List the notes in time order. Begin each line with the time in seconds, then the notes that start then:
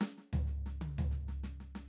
0.01 snare, hi-hat pedal
0.18 snare
0.34 floor tom
0.48 snare
0.67 snare
0.82 high tom
0.99 floor tom
1.12 snare
1.29 snare
1.44 snare
1.61 snare
1.76 snare